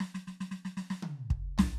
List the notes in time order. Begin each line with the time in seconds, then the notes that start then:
0.01 snare
0.15 snare
0.28 snare
0.41 snare
0.52 snare
0.65 snare
0.78 snare
0.91 snare
1.03 high tom
1.31 kick
1.58 snare, floor tom